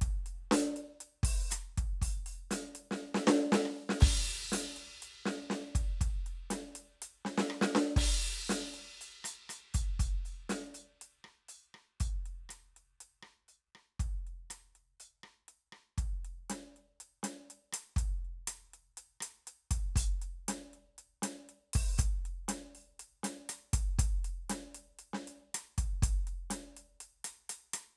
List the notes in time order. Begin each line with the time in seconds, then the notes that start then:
0.01 kick, closed hi-hat
0.26 open hi-hat
0.51 open hi-hat, snare
0.60 open hi-hat
0.76 open hi-hat
1.00 closed hi-hat
1.23 kick, open hi-hat
1.51 cross-stick, closed hi-hat, hi-hat pedal
1.77 kick, closed hi-hat
2.01 kick, open hi-hat
2.26 open hi-hat
2.51 open hi-hat, snare
2.75 open hi-hat
2.91 snare
3.14 snare
3.27 snare
3.52 snare
3.65 cross-stick
3.89 snare
4.00 kick, crash
4.52 snare, open hi-hat
4.76 open hi-hat
5.02 open hi-hat
5.26 snare
5.50 snare
5.75 kick, closed hi-hat
6.01 kick, closed hi-hat
6.26 open hi-hat
6.50 snare, open hi-hat
6.75 open hi-hat
7.02 open hi-hat
7.25 snare
7.38 snare
7.50 cross-stick
7.61 snare
7.75 snare
7.96 kick, crash
8.25 open hi-hat
8.49 open hi-hat, snare
8.74 open hi-hat
9.01 open hi-hat
9.24 closed hi-hat, cross-stick
9.49 closed hi-hat, cross-stick
9.74 closed hi-hat, kick
9.99 closed hi-hat, kick
10.25 open hi-hat
10.49 open hi-hat, snare
10.74 open hi-hat
11.01 open hi-hat
11.24 cross-stick
11.48 open hi-hat
11.74 cross-stick
12.00 closed hi-hat, kick
12.26 closed hi-hat
12.49 cross-stick, closed hi-hat
12.76 closed hi-hat
13.00 closed hi-hat
13.23 cross-stick
13.48 closed hi-hat
13.75 cross-stick
13.99 kick, closed hi-hat
14.27 closed hi-hat
14.50 cross-stick, closed hi-hat
14.75 closed hi-hat
15.00 closed hi-hat
15.23 cross-stick
15.48 closed hi-hat
15.72 cross-stick
15.98 kick, closed hi-hat
16.25 closed hi-hat
16.50 snare, closed hi-hat
16.76 closed hi-hat
17.00 closed hi-hat
17.23 snare, closed hi-hat
17.50 closed hi-hat
17.73 cross-stick, closed hi-hat
17.96 kick, closed hi-hat
18.25 closed hi-hat
18.47 cross-stick, closed hi-hat
18.74 closed hi-hat
18.97 closed hi-hat
19.21 cross-stick, closed hi-hat
19.47 closed hi-hat
19.71 kick, closed hi-hat
19.96 closed hi-hat, kick
20.22 closed hi-hat
20.48 snare, closed hi-hat
20.73 closed hi-hat
20.98 closed hi-hat
21.22 snare, closed hi-hat
21.49 closed hi-hat
21.73 kick, open hi-hat
21.98 kick, closed hi-hat, hi-hat pedal
22.25 closed hi-hat
22.48 snare, open hi-hat
22.75 open hi-hat
22.99 open hi-hat
23.23 snare, open hi-hat
23.49 cross-stick, open hi-hat
23.73 kick, closed hi-hat
23.99 kick, open hi-hat
24.24 open hi-hat
24.49 snare, open hi-hat
24.74 open hi-hat
24.99 open hi-hat
25.13 snare
25.27 open hi-hat
25.54 cross-stick, closed hi-hat
25.78 kick, closed hi-hat
26.02 kick, closed hi-hat
26.27 open hi-hat
26.50 snare, open hi-hat
26.77 open hi-hat
27.00 open hi-hat
27.24 cross-stick, open hi-hat
27.49 cross-stick, open hi-hat
27.73 cross-stick, closed hi-hat